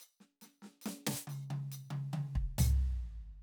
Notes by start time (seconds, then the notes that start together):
0.00 hi-hat pedal
0.20 snare
0.41 snare, hi-hat pedal
0.62 snare
0.64 snare
0.81 hi-hat pedal
0.86 snare
1.07 snare
1.27 hi-hat pedal, high tom
1.50 closed hi-hat, high tom
1.72 hi-hat pedal
1.90 high tom
2.13 high tom
2.35 kick
2.58 floor tom, percussion